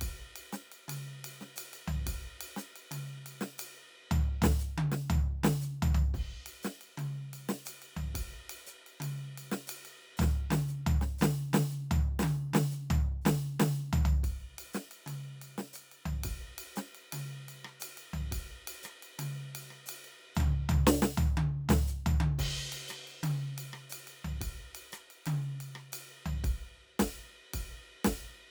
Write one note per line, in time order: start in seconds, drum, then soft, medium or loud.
0.01 kick medium
0.01 ride loud
0.35 ride loud
0.52 snare medium
0.52 hi-hat pedal medium
0.72 ride medium
0.88 mid tom medium
0.88 ride loud
1.02 hi-hat pedal soft
1.24 ride loud
1.41 snare soft
1.56 hi-hat pedal medium
1.56 ride loud
1.73 ride medium
1.87 floor tom medium
2.06 kick medium
2.06 ride loud
2.40 ride loud
2.56 snare medium
2.56 hi-hat pedal medium
2.76 ride medium
2.91 mid tom medium
2.91 ride loud
3.06 hi-hat pedal soft
3.26 ride medium
3.41 snare medium
3.58 hi-hat pedal medium
3.58 ride loud
4.11 floor tom loud
4.42 snare loud
4.42 floor tom loud
4.59 hi-hat pedal medium
4.78 mid tom loud
4.92 snare medium
5.10 floor tom loud
5.43 snare loud
5.43 mid tom loud
5.61 hi-hat pedal medium
5.82 floor tom loud
5.94 floor tom loud
6.14 kick medium
6.14 ride medium
6.46 ride loud
6.63 snare medium
6.63 hi-hat pedal medium
6.81 ride medium
6.97 mid tom loud
6.97 ride medium
7.33 ride medium
7.49 snare loud
7.65 hi-hat pedal medium
7.65 ride loud
7.82 ride medium
7.96 floor tom medium
8.14 kick medium
8.14 ride loud
8.49 ride loud
8.66 hi-hat pedal medium
8.86 ride medium
9.00 mid tom medium
9.00 ride loud
9.37 ride medium
9.51 snare medium
9.67 hi-hat pedal medium
9.67 ride loud
9.85 ride medium
10.17 floor tom loud
10.17 hi-hat pedal medium
10.21 snare medium
10.50 snare loud
10.50 mid tom loud
10.68 hi-hat pedal soft
10.86 floor tom loud
11.01 snare medium
11.18 snare loud
11.18 hi-hat pedal medium
11.18 mid tom loud
11.53 snare loud
11.53 mid tom loud
11.70 hi-hat pedal soft
11.91 floor tom loud
12.19 snare loud
12.19 hi-hat pedal soft
12.19 mid tom loud
12.53 snare loud
12.53 mid tom loud
12.71 hi-hat pedal soft
12.90 floor tom loud
13.21 hi-hat pedal soft
13.21 mid tom loud
13.26 snare loud
13.59 snare loud
13.59 mid tom loud
13.74 hi-hat pedal soft
13.93 floor tom loud
14.05 floor tom loud
14.23 kick medium
14.23 ride medium
14.52 ride soft
14.58 ride loud
14.73 snare medium
14.73 hi-hat pedal medium
14.91 ride medium
15.06 mid tom medium
15.06 ride medium
15.41 ride medium
15.58 snare medium
15.73 hi-hat pedal medium
15.73 ride medium
15.91 ride medium
16.04 kick soft
16.04 floor tom medium
16.23 kick medium
16.23 ride loud
16.58 ride loud
16.75 snare medium
16.75 hi-hat pedal medium
16.94 ride medium
17.12 mid tom medium
17.12 ride loud
17.48 ride medium
17.64 cross-stick medium
17.80 hi-hat pedal medium
17.80 ride loud
17.97 ride medium
18.13 floor tom medium
18.31 kick medium
18.31 ride loud
18.67 ride loud
18.83 cross-stick medium
18.83 hi-hat pedal medium
19.02 ride medium
19.19 mid tom medium
19.19 ride loud
19.55 ride loud
19.70 cross-stick soft
19.86 hi-hat pedal medium
19.86 ride loud
20.04 ride medium
20.35 floor tom loud
20.35 hi-hat pedal soft
20.40 mid tom loud
20.69 floor tom loud
20.69 mid tom loud
20.86 snare loud
20.86 hi-hat pedal medium
21.02 snare loud
21.17 floor tom loud
21.35 hi-hat pedal soft
21.35 mid tom loud
21.69 snare loud
21.69 floor tom loud
21.87 hi-hat pedal medium
22.06 floor tom loud
22.20 mid tom loud
22.38 kick medium
22.38 ride loud
22.72 ride loud
22.88 cross-stick medium
22.88 hi-hat pedal medium
23.07 ride medium
23.23 mid tom loud
23.23 ride loud
23.58 ride loud
23.73 cross-stick medium
23.89 hi-hat pedal medium
23.89 ride loud
24.07 ride medium
24.24 floor tom medium
24.41 kick medium
24.41 ride loud
24.75 ride loud
24.92 cross-stick medium
24.92 hi-hat pedal medium
25.10 ride medium
25.26 mid tom loud
25.26 ride medium
25.41 hi-hat pedal soft
25.60 ride medium
25.75 cross-stick medium
25.92 hi-hat pedal medium
25.92 ride loud
26.26 floor tom medium
26.44 kick medium
26.44 ride loud
26.99 kick medium
26.99 snare loud
26.99 ride loud
27.53 kick medium
27.53 ride loud
28.04 kick medium
28.04 snare loud
28.04 ride loud